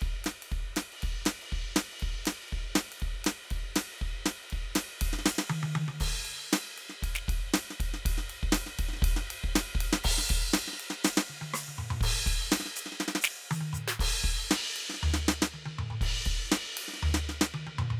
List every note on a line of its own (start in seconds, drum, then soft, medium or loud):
0.01 kick medium
0.01 ride soft
0.24 snare medium
0.24 ride medium
0.42 ride medium
0.52 kick medium
0.52 ride soft
0.76 snare medium
0.76 ride medium
0.92 ride medium
1.02 kick medium
1.02 ride medium
1.25 snare loud
1.25 ride medium
1.41 ride medium
1.52 kick medium
1.76 snare loud
1.76 ride loud
1.92 ride medium
2.00 kick medium
2.00 ride soft
2.26 snare loud
2.26 hi-hat pedal soft
2.26 ride loud
2.42 ride soft
2.48 hi-hat pedal soft
2.48 ride soft
2.52 kick medium
2.75 snare loud
2.75 ride loud
2.92 ride medium
3.00 kick medium
3.00 ride soft
3.24 snare loud
3.24 ride loud
3.44 ride soft
3.51 kick medium
3.51 ride medium
3.76 snare loud
3.76 ride loud
3.92 ride soft
3.98 kick medium
3.98 ride soft
4.26 snare loud
4.26 hi-hat pedal soft
4.26 ride medium
4.43 ride soft
4.50 kick medium
4.50 ride medium
4.75 snare loud
4.75 ride loud
4.99 kick medium
4.99 hi-hat pedal soft
4.99 ride loud
5.13 snare medium
5.19 snare soft
5.26 snare loud
5.26 hi-hat pedal loud
5.38 snare loud
5.49 high tom loud
5.63 high tom loud
5.75 high tom loud
5.88 high tom medium
6.00 kick medium
6.00 hi-hat pedal medium
6.00 crash medium
6.25 ride medium
6.53 snare loud
6.53 ride loud
6.76 hi-hat pedal soft
6.76 ride medium
6.89 snare soft
7.02 kick medium
7.02 ride medium
7.15 snare medium
7.28 kick medium
7.28 ride medium
7.54 snare loud
7.54 ride loud
7.70 snare soft
7.77 kick medium
7.77 hi-hat pedal soft
7.77 ride medium
7.94 snare soft
8.05 kick medium
8.05 ride loud
8.18 snare soft
8.30 ride medium
8.43 kick medium
8.52 snare loud
8.52 ride loud
8.66 snare soft
8.79 kick medium
8.79 ride medium
8.89 snare soft
8.93 snare soft
8.96 snare soft
9.02 kick medium
9.02 ride loud
9.16 snare medium
9.30 ride loud
9.44 kick medium
9.55 snare loud
9.55 ride loud
9.75 kick medium
9.81 ride loud
9.93 snare loud
10.04 kick medium
10.04 crash medium
10.18 snare medium
10.29 kick medium
10.29 ride loud
10.53 snare loud
10.53 ride loud
10.68 snare soft
10.73 snare soft
10.80 ride medium
10.90 snare medium
11.04 kick soft
11.04 snare loud
11.04 hi-hat pedal loud
11.17 snare loud
11.29 high tom soft
11.41 high tom medium
11.54 cross-stick medium
11.54 hi-hat pedal loud
11.68 high tom soft
11.78 mid tom medium
11.90 mid tom loud
12.01 kick medium
12.01 crash medium
12.26 kick medium
12.26 ride medium
12.52 snare loud
12.52 ride loud
12.60 snare medium
12.66 snare soft
12.76 hi-hat pedal loud
12.76 ride medium
12.86 snare soft
12.92 snare soft
13.00 snare medium
13.08 snare medium
13.15 snare medium
13.21 snare loud
13.21 hi-hat pedal loud
13.51 hi-hat pedal medium
13.51 high tom loud
13.61 high tom medium
13.73 hi-hat pedal medium
13.73 mid tom medium
13.88 snare medium
13.99 kick medium
13.99 crash medium
14.24 kick medium
14.51 snare loud
14.51 ride loud
14.76 ride medium
14.89 snare medium
14.94 snare soft
15.03 floor tom loud
15.14 snare medium
15.28 snare loud
15.42 snare loud
15.54 high tom medium
15.66 high tom medium
15.79 mid tom loud
15.90 mid tom medium
16.01 kick medium
16.01 ride loud
16.26 kick medium
16.26 ride medium
16.49 kick soft
16.49 snare loud
16.49 ride medium
16.77 ride loud
16.88 snare soft
16.93 snare soft
16.98 snare soft
17.02 floor tom loud
17.14 snare loud
17.29 snare medium
17.41 snare loud
17.54 high tom loud
17.67 high tom medium
17.78 mid tom loud
17.90 mid tom medium